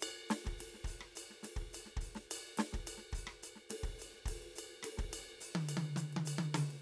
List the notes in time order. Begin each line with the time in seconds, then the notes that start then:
0.01 hi-hat pedal, ride bell
0.30 snare, hi-hat pedal, ride
0.45 kick, snare
0.59 hi-hat pedal, ride
0.75 snare
0.85 kick, hi-hat pedal, ride
1.01 cross-stick, ride
1.16 hi-hat pedal, ride bell
1.31 snare
1.44 snare, hi-hat pedal, ride
1.57 kick, ride
1.74 hi-hat pedal, ride bell
1.86 snare
1.97 kick
2.02 hi-hat pedal, ride
2.16 snare, ride
2.31 hi-hat pedal, ride bell
2.58 snare, hi-hat pedal, ride
2.73 kick, snare
2.87 hi-hat pedal, ride bell
2.98 snare
3.13 kick, hi-hat pedal, ride
3.28 cross-stick
3.43 hi-hat pedal, ride bell
3.56 snare
3.70 snare, hi-hat pedal, ride
3.84 kick, ride
3.99 hi-hat pedal, ride bell
4.14 snare
4.26 kick, hi-hat pedal, ride
4.43 ride
4.56 hi-hat pedal, ride bell
4.84 cross-stick, hi-hat pedal, ride
4.98 kick, snare
5.13 hi-hat pedal, ride bell
5.41 hi-hat pedal, ride
5.56 high tom, ride
5.69 hi-hat pedal, ride bell
5.78 high tom
5.97 hi-hat pedal, high tom, ride bell
6.13 high tom, ride
6.26 hi-hat pedal, ride bell
6.39 open hi-hat, high tom
6.55 hi-hat pedal, high tom, ride
6.71 ride